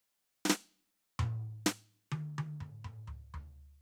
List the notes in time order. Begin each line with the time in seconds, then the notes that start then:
0.45 snare
0.50 snare
1.19 mid tom
1.66 snare
2.12 high tom
2.38 high tom
2.61 mid tom
2.85 mid tom
3.08 floor tom
3.34 floor tom